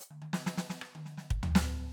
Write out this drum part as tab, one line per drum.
HH |p---------------|
SD |---oooor-gg--o--|
T1 |-go-----o-------|
FT |------------o---|
BD |-----------o----|